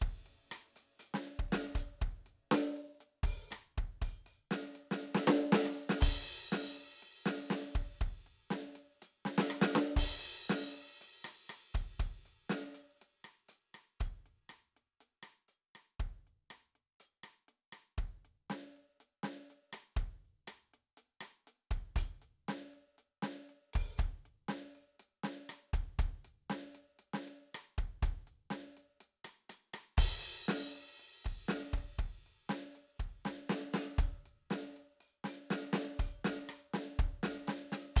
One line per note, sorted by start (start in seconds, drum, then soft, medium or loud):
0.01 kick medium
0.01 closed hi-hat medium
0.26 open hi-hat medium
0.51 open hi-hat loud
0.51 cross-stick medium
0.76 open hi-hat medium
0.99 open hi-hat medium
1.14 snare medium
1.27 open hi-hat medium
1.39 kick medium
1.52 closed hi-hat medium
1.52 snare medium
1.60 open hi-hat soft
1.75 closed hi-hat medium
1.75 kick medium
2.01 kick medium
2.01 closed hi-hat medium
2.26 open hi-hat medium
2.51 open hi-hat loud
2.51 snare loud
2.60 open hi-hat soft
2.76 open hi-hat medium
3.00 closed hi-hat medium
3.23 kick medium
3.23 open hi-hat loud
3.51 cross-stick medium
3.51 closed hi-hat loud
3.51 hi-hat pedal loud
3.77 kick medium
3.77 closed hi-hat medium
4.01 kick medium
4.01 open hi-hat loud
4.26 open hi-hat medium
4.51 open hi-hat loud
4.51 snare medium
4.75 open hi-hat medium
4.91 snare medium
5.14 snare loud
5.27 snare loud
5.52 snare loud
5.65 cross-stick medium
5.89 snare medium
6.00 kick loud
6.00 crash loud
6.52 snare medium
6.52 open hi-hat loud
6.76 open hi-hat medium
7.02 open hi-hat medium
7.26 snare medium
7.50 snare medium
7.75 kick medium
7.75 closed hi-hat medium
8.01 kick medium
8.01 closed hi-hat medium
8.26 open hi-hat soft
8.50 snare medium
8.50 open hi-hat loud
8.75 open hi-hat medium
9.02 open hi-hat loud
9.25 snare medium
9.38 snare loud
9.50 cross-stick medium
9.61 snare loud
9.75 snare medium
9.96 kick medium
9.96 crash loud
10.25 open hi-hat medium
10.49 open hi-hat loud
10.49 snare medium
10.74 open hi-hat medium
11.01 open hi-hat medium
11.24 closed hi-hat loud
11.24 cross-stick medium
11.49 closed hi-hat medium
11.49 cross-stick medium
11.74 closed hi-hat medium
11.74 kick medium
11.99 closed hi-hat medium
11.99 kick medium
12.25 open hi-hat soft
12.49 open hi-hat medium
12.49 snare medium
12.74 open hi-hat medium
13.01 open hi-hat medium
13.24 cross-stick medium
13.48 open hi-hat medium
13.74 cross-stick soft
14.00 closed hi-hat medium
14.00 kick medium
14.26 closed hi-hat soft
14.49 cross-stick medium
14.49 closed hi-hat medium
14.76 closed hi-hat soft
15.00 closed hi-hat medium
15.23 cross-stick medium
15.48 closed hi-hat soft
15.75 cross-stick soft
15.99 kick medium
15.99 closed hi-hat medium
16.27 closed hi-hat soft
16.50 cross-stick medium
16.50 closed hi-hat medium
16.75 closed hi-hat soft
17.00 closed hi-hat soft
17.23 cross-stick medium
17.48 closed hi-hat soft
17.72 cross-stick medium
17.98 kick medium
17.98 closed hi-hat medium
18.25 closed hi-hat soft
18.50 snare medium
18.50 closed hi-hat medium
18.76 closed hi-hat soft
19.00 closed hi-hat medium
19.23 snare medium
19.23 closed hi-hat loud
19.50 closed hi-hat medium
19.73 cross-stick medium
19.73 closed hi-hat loud
19.96 kick medium
19.96 closed hi-hat medium
20.25 closed hi-hat soft
20.47 cross-stick medium
20.47 closed hi-hat loud
20.74 closed hi-hat soft
20.97 closed hi-hat medium
21.21 cross-stick medium
21.21 closed hi-hat loud
21.47 closed hi-hat medium
21.71 kick medium
21.71 closed hi-hat loud
21.96 closed hi-hat loud
21.96 kick medium
22.22 closed hi-hat medium
22.48 snare medium
22.48 closed hi-hat loud
22.73 closed hi-hat soft
22.98 closed hi-hat medium
23.22 snare medium
23.22 closed hi-hat loud
23.49 closed hi-hat soft
23.73 kick medium
23.73 open hi-hat loud
23.98 kick medium
23.98 closed hi-hat loud
23.98 hi-hat pedal loud
24.25 closed hi-hat soft
24.48 snare medium
24.48 open hi-hat loud
24.75 open hi-hat soft
24.99 open hi-hat medium
25.23 snare medium
25.23 open hi-hat loud
25.49 cross-stick medium
25.49 open hi-hat loud
25.73 kick medium
25.73 closed hi-hat loud
25.99 kick medium
25.99 open hi-hat loud
26.24 open hi-hat medium
26.49 snare medium
26.49 open hi-hat loud
26.74 open hi-hat medium
26.99 open hi-hat medium
27.13 snare medium
27.27 open hi-hat medium
27.54 cross-stick medium
27.54 closed hi-hat loud
27.78 kick medium
27.78 closed hi-hat medium
28.02 kick medium
28.02 closed hi-hat loud
28.27 open hi-hat soft
28.50 snare medium
28.50 open hi-hat loud
28.77 open hi-hat medium
29.00 open hi-hat medium
29.24 cross-stick medium
29.24 open hi-hat loud
29.49 cross-stick soft
29.49 open hi-hat loud
29.73 cross-stick medium
29.73 closed hi-hat loud
29.97 kick loud
29.97 crash loud
30.22 open hi-hat medium
30.48 snare medium
30.48 open hi-hat loud
30.75 open hi-hat soft
30.99 open hi-hat medium
31.24 kick medium
31.24 open hi-hat loud
31.48 snare medium
31.48 closed hi-hat medium
31.73 kick medium
31.73 closed hi-hat medium
31.77 kick soft
31.98 kick medium
31.98 open hi-hat medium
32.26 open hi-hat soft
32.49 snare medium
32.49 open hi-hat loud
32.75 closed hi-hat medium
32.99 kick medium
32.99 open hi-hat medium
33.25 snare medium
33.25 open hi-hat medium
33.49 snare medium
33.49 open hi-hat medium
33.73 snare medium
33.73 open hi-hat medium
33.98 kick medium
33.98 open hi-hat loud
34.25 open hi-hat medium
34.50 snare medium
34.50 open hi-hat medium
34.76 open hi-hat medium
35.00 open hi-hat medium
35.24 open hi-hat medium
35.24 snare medium
35.50 snare medium
35.50 open hi-hat medium
35.73 snare medium
35.73 closed hi-hat loud
35.99 kick medium
35.99 open hi-hat loud
36.24 snare medium
36.24 open hi-hat loud
36.49 cross-stick medium
36.49 open hi-hat medium
36.73 snare medium
36.73 closed hi-hat loud
36.99 kick medium
36.99 closed hi-hat medium
37.23 snare medium
37.23 open hi-hat loud
37.47 snare medium
37.47 open hi-hat loud
37.72 snare medium
37.72 open hi-hat loud
37.96 kick loud
37.96 crash loud